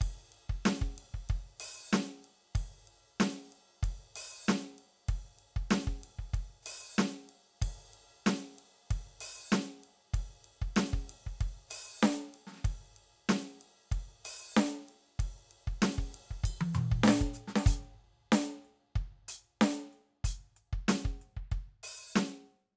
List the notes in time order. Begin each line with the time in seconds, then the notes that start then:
0.01 kick, ride
0.32 ride
0.50 kick
0.66 snare, ride
0.82 kick
0.98 ride
1.14 kick
1.29 kick, ride
1.56 hi-hat pedal
1.60 open hi-hat, ride
1.93 snare, hi-hat pedal, ride
2.24 ride
2.55 kick, ride
2.88 ride
3.20 snare, ride
3.52 ride
3.83 kick, ride
4.16 open hi-hat, ride
4.48 snare, hi-hat pedal, ride
4.78 ride
5.09 kick, ride
5.39 ride
5.56 kick
5.71 snare, ride
5.87 kick
6.04 ride
6.19 kick
6.34 kick, ride
6.63 open hi-hat, hi-hat pedal, ride
6.98 snare, hi-hat pedal, ride
7.29 ride
7.62 kick, ride
7.94 ride
8.26 snare, ride
8.59 ride
8.91 kick, ride
9.21 open hi-hat, ride
9.52 snare, hi-hat pedal, ride
9.84 ride
10.14 kick, ride
10.45 ride
10.62 kick
10.76 snare, ride
10.93 kick
11.10 ride
11.27 kick
11.41 kick, ride
11.68 open hi-hat, hi-hat pedal, ride
12.03 snare, hi-hat pedal, ride
12.34 ride
12.47 snare
12.52 snare
12.55 snare
12.58 snare
12.65 kick, ride
12.97 ride
13.29 snare, ride
13.61 ride
13.92 kick, ride
14.25 open hi-hat, ride
14.57 snare, hi-hat pedal, ride
14.89 ride
15.19 kick, ride
15.51 ride
15.67 kick
15.81 snare, hi-hat pedal, ride
15.98 kick
16.11 hi-hat pedal, ride
16.31 kick
16.44 kick, ride bell
16.61 high tom
16.74 hi-hat pedal, mid tom
16.92 kick
17.04 snare, hi-hat pedal
17.08 snare
17.21 kick
17.34 hi-hat pedal
17.48 snare
17.56 snare
17.66 closed hi-hat, kick
18.32 closed hi-hat, snare
18.65 closed hi-hat
18.96 kick, closed hi-hat
19.28 open hi-hat
19.61 snare, hi-hat pedal
19.93 closed hi-hat
20.24 closed hi-hat, kick
20.57 closed hi-hat
20.73 kick
20.88 closed hi-hat, snare
21.05 kick
21.22 closed hi-hat
21.37 kick
21.52 kick, closed hi-hat
21.83 open hi-hat
22.16 open hi-hat, snare, hi-hat pedal